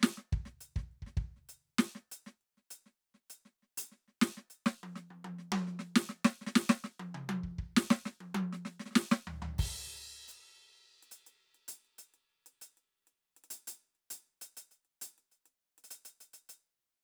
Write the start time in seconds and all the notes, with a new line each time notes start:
0.00 snare
0.03 snare
0.17 snare
0.32 kick
0.45 snare
0.61 closed hi-hat
0.76 kick, snare
0.91 closed hi-hat
1.02 kick
1.06 snare
1.17 kick
1.36 snare
1.49 closed hi-hat
1.78 snare
1.95 snare
2.12 closed hi-hat
2.26 snare
2.41 closed hi-hat
2.57 snare
2.71 closed hi-hat
2.86 snare
3.01 closed hi-hat
3.14 snare
3.30 closed hi-hat
3.45 snare
3.62 snare
3.77 closed hi-hat
3.92 snare
4.08 snare
4.21 snare
4.37 snare
4.50 closed hi-hat
4.66 snare
4.83 high tom
4.96 snare
5.10 high tom
5.24 high tom
5.39 snare
5.52 high tom
5.67 snare
5.79 snare
5.96 snare
6.09 snare
6.25 snare
6.41 snare
6.47 snare
6.55 snare
6.69 snare
6.84 snare
7.00 high tom
7.14 mid tom
7.29 high tom
7.43 kick
7.58 kick
7.77 snare
7.90 snare
8.05 snare
8.20 high tom
8.35 high tom
8.53 snare
8.65 snare
8.80 snare
8.86 snare
8.91 snare
8.95 snare
9.11 snare
9.27 floor tom
9.42 floor tom
9.58 kick, crash
10.28 hi-hat pedal
10.77 closed hi-hat
10.98 closed hi-hat
11.03 closed hi-hat
11.11 closed hi-hat
11.27 closed hi-hat
11.40 closed hi-hat
11.54 closed hi-hat
11.68 closed hi-hat
11.85 closed hi-hat
11.98 closed hi-hat
12.14 closed hi-hat
12.30 closed hi-hat
12.46 closed hi-hat
12.61 closed hi-hat
12.77 closed hi-hat
13.07 closed hi-hat
13.37 closed hi-hat
13.44 closed hi-hat
13.50 closed hi-hat
13.67 closed hi-hat
13.83 closed hi-hat
13.95 closed hi-hat
14.10 closed hi-hat
14.26 closed hi-hat
14.41 closed hi-hat
14.57 closed hi-hat
14.71 closed hi-hat
14.85 closed hi-hat
15.01 closed hi-hat
15.18 closed hi-hat
15.31 closed hi-hat
15.46 closed hi-hat
15.78 closed hi-hat
15.84 closed hi-hat
15.91 closed hi-hat
16.05 closed hi-hat
16.20 closed hi-hat
16.33 closed hi-hat
16.49 closed hi-hat